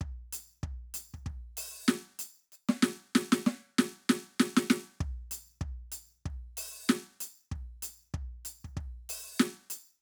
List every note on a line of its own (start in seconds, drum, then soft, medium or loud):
0.01 kick medium
0.33 percussion loud
0.63 kick medium
0.94 percussion loud
1.14 kick soft
1.26 kick medium
1.26 crash soft
1.57 percussion loud
1.88 snare loud
1.88 percussion medium
2.19 percussion loud
2.52 percussion medium
2.69 snare loud
2.83 snare loud
3.15 snare loud
3.32 snare loud
3.47 snare loud
3.79 snare loud
4.10 snare loud
4.40 snare loud
4.57 snare loud
4.70 snare loud
5.01 kick medium
5.31 percussion loud
5.61 kick medium
5.92 percussion loud
6.26 kick medium
6.30 crash soft
6.57 percussion loud
6.89 snare loud
6.89 percussion medium
7.21 percussion loud
7.52 kick medium
7.56 crash soft
7.83 percussion loud
8.14 kick medium
8.45 percussion loud
8.65 kick soft
8.77 kick medium
8.77 crash soft
9.09 percussion loud
9.40 snare loud
9.40 percussion medium
9.70 percussion loud